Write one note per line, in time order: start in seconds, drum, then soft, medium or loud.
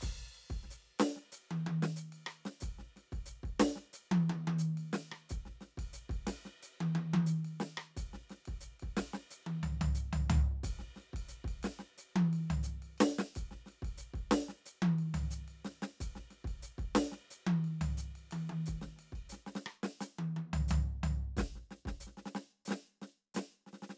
0.01 kick medium
0.01 hi-hat pedal medium
0.01 crash medium
0.24 hi-hat pedal soft
0.35 ride soft
0.51 kick medium
0.51 ride soft
0.64 snare soft
0.71 hi-hat pedal medium
0.83 ride soft
1.00 snare medium
1.00 ride medium
1.17 snare soft
1.33 hi-hat pedal medium
1.33 ride soft
1.52 high tom medium
1.67 high tom medium
1.83 snare medium
1.97 hi-hat pedal medium
2.13 ride soft
2.27 cross-stick medium
2.27 ride soft
2.46 snare medium
2.61 kick medium
2.61 hi-hat pedal medium
2.61 ride medium
2.79 snare soft
2.97 snare soft
2.97 ride soft
3.13 kick medium
3.13 ride soft
3.27 hi-hat pedal medium
3.44 kick medium
3.44 ride soft
3.60 snare loud
3.60 ride medium
3.77 snare soft
3.94 hi-hat pedal medium
3.94 ride soft
4.12 high tom loud
4.30 high tom loud
4.48 high tom loud
4.59 hi-hat pedal medium
4.78 ride soft
4.94 snare medium
4.94 ride medium
5.12 cross-stick medium
5.30 kick medium
5.30 hi-hat pedal medium
5.30 ride soft
5.46 snare soft
5.62 snare soft
5.62 ride soft
5.78 kick medium
5.78 ride medium
5.94 hi-hat pedal medium
6.10 kick medium
6.10 ride soft
6.28 snare medium
6.28 ride medium
6.46 snare soft
6.63 hi-hat pedal medium
6.63 ride soft
6.81 high tom loud
6.96 high tom medium
7.14 high tom loud
7.27 hi-hat pedal medium
7.45 ride soft
7.61 snare medium
7.61 ride soft
7.78 cross-stick medium
7.97 kick medium
7.97 hi-hat pedal medium
7.97 ride medium
8.14 snare soft
8.30 snare soft
8.30 ride soft
8.46 kick medium
8.46 ride soft
8.61 hi-hat pedal medium
8.80 kick medium
8.80 ride soft
8.98 snare medium
8.98 ride medium
9.14 snare medium
9.31 hi-hat pedal medium
9.31 ride soft
9.47 high tom medium
9.64 floor tom medium
9.82 floor tom loud
9.96 hi-hat pedal medium
10.13 floor tom medium
10.31 floor tom loud
10.64 kick medium
10.64 hi-hat pedal medium
10.64 ride medium
10.80 snare soft
10.97 snare soft
11.01 ride soft
11.14 kick medium
11.14 ride medium
11.29 hi-hat pedal medium
11.45 kick medium
11.45 ride medium
11.64 snare medium
11.64 ride medium
11.80 snare soft
11.98 hi-hat pedal medium
11.98 ride soft
12.17 high tom loud
12.34 ride soft
12.51 floor tom medium
12.64 snare soft
12.64 hi-hat pedal medium
12.83 ride soft
12.99 snare loud
12.99 ride bell soft
13.19 snare medium
13.36 kick medium
13.36 hi-hat pedal medium
13.36 ride medium
13.52 snare soft
13.67 snare soft
13.67 ride soft
13.83 kick medium
13.83 ride soft
13.98 hi-hat pedal medium
14.14 kick medium
14.14 ride soft
14.32 snare loud
14.32 ride medium
14.49 snare soft
14.66 hi-hat pedal medium
14.66 ride soft
14.83 high tom loud
14.99 ride soft
15.15 floor tom medium
15.15 ride medium
15.32 hi-hat pedal medium
15.49 ride soft
15.65 snare medium
15.65 ride soft
15.83 snare medium
16.01 kick medium
16.01 hi-hat pedal medium
16.01 ride medium
16.16 snare soft
16.31 snare soft
16.31 ride soft
16.45 kick medium
16.45 ride soft
16.63 hi-hat pedal medium
16.79 kick medium
16.79 ride soft
16.96 snare loud
16.96 ride medium
17.13 snare soft
17.31 hi-hat pedal medium
17.31 ride soft
17.47 high tom loud
17.65 ride soft
17.82 floor tom medium
17.82 ride medium
17.98 hi-hat pedal medium
18.16 ride soft
18.32 high tom medium
18.32 ride medium
18.50 high tom medium
18.67 kick medium
18.67 hi-hat pedal medium
18.67 ride soft
18.82 snare soft
18.97 snare soft
18.97 ride soft
19.13 kick soft
19.13 ride bell soft
19.30 snare soft
19.30 hi-hat pedal medium
19.47 snare soft
19.56 snare medium
19.67 cross-stick medium
19.84 snare medium
20.01 snare medium
20.01 hi-hat pedal medium
20.19 high tom medium
20.37 high tom medium
20.54 floor tom medium
20.69 floor tom loud
20.69 hi-hat pedal medium
21.04 floor tom medium
21.38 kick medium
21.38 snare medium
21.38 hi-hat pedal medium
21.56 snare soft
21.72 snare soft
21.86 kick medium
21.86 snare soft
22.01 hi-hat pedal medium
22.07 snare soft
22.18 snare soft
22.26 snare soft
22.36 snare medium
22.66 snare medium
22.66 hi-hat pedal medium
22.72 snare medium
23.02 snare soft
23.35 snare soft
23.35 hi-hat pedal medium
23.37 snare medium
23.67 snare soft
23.74 snare soft
23.83 snare soft
23.90 snare soft